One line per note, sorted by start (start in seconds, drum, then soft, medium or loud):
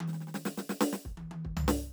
0.00 high tom medium
0.08 snare soft
0.13 snare soft
0.21 snare soft
0.27 snare soft
0.34 snare medium
0.45 snare medium
0.58 snare medium
0.69 snare medium
0.81 snare loud
0.93 snare medium
1.05 kick medium
1.17 closed hi-hat soft
1.17 high tom medium
1.31 high tom medium
1.45 kick medium
1.57 floor tom loud
1.68 snare loud